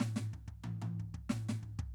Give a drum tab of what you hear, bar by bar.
Snare     |oo------oo--|
High tom  |----oo------|
Floor tom |oo--oo--oo--|
Kick      |--gg--gg--go|